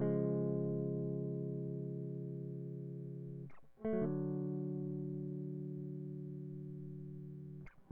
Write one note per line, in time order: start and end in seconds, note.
0.00 3.53 C#3
0.00 3.50 F3
0.00 3.31 G#3
3.86 4.08 A3
3.94 7.69 F#3
4.03 7.69 D3